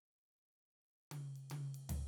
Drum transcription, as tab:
RD |--------x-xx-xx-|
T1 |--------o--o----|
FT |--------------o-|